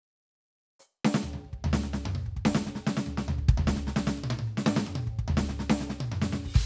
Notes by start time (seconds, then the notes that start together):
0.79 hi-hat pedal
1.05 snare
1.14 snare
1.23 floor tom
1.33 floor tom
1.44 kick
1.53 kick
1.64 floor tom
1.73 snare
1.84 snare
1.93 snare
2.05 mid tom
2.15 high tom
2.26 kick
2.36 kick
2.45 snare
2.55 snare
2.66 snare
2.75 snare
2.87 snare
3.06 floor tom
3.17 snare
3.28 floor tom
3.38 kick
3.49 kick, hi-hat pedal
3.57 floor tom
3.67 snare
3.76 snare
3.87 snare
3.96 snare
4.07 snare
4.18 high tom
4.24 high tom
4.30 high tom
4.39 high tom
4.47 cross-stick
4.57 snare
4.66 snare
4.76 snare
4.86 mid tom
4.95 high tom
5.07 kick
5.19 kick
5.28 floor tom
5.37 snare
5.49 snare
5.59 snare
5.70 snare
5.80 snare
5.89 snare
6.00 high tom
6.12 mid tom
6.22 snare
6.32 snare
6.44 kick, crash
6.54 kick, crash